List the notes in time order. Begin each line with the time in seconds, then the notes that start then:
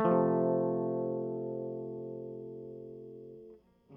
0.00 A3
0.05 F3
0.12 C3